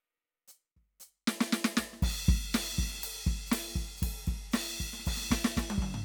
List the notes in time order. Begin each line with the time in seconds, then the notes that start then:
0.48 hi-hat pedal
0.76 kick
1.00 hi-hat pedal
1.27 snare
1.40 snare
1.52 snare
1.64 snare
1.77 kick, snare
1.93 snare
2.02 kick, crash
2.28 kick
2.53 snare, hi-hat pedal, crash
2.78 kick, snare, crash
2.86 snare
2.89 snare
2.92 snare
2.94 snare
2.96 snare
2.98 snare, hi-hat pedal
3.02 snare, crash
3.26 kick, crash
3.46 hi-hat pedal
3.51 snare, crash
3.76 kick, crash
3.87 snare
3.90 snare
3.96 snare, hi-hat pedal
4.01 kick, snare, crash
4.27 kick, crash
4.52 snare, hi-hat pedal, crash
4.80 kick, crash
4.93 snare
4.99 snare
5.05 kick, hi-hat pedal, crash
5.17 snare
5.21 snare
5.25 snare
5.31 kick, snare
5.44 snare
5.56 kick, snare, hi-hat pedal
5.70 high tom
5.78 kick
5.82 mid tom
5.94 floor tom